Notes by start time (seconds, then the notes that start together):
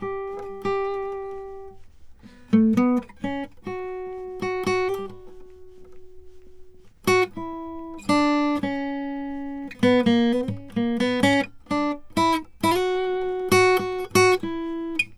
0.01 G4
0.66 G4
2.54 A3
2.78 B3
3.25 C#4
3.68 F#4
4.43 F#4
4.68 F#4
4.88 G4
5.07 F#4
7.08 F#4
7.38 E4
8.10 D4
8.64 C#4
9.84 B3
10.07 A#3
10.42 C4
10.77 A#3
11.01 B3
11.24 C#4
11.72 D4
12.18 E4
12.64 E4
12.76 F#4
13.52 F#4
13.78 F#4
14.16 F#4
14.44 E4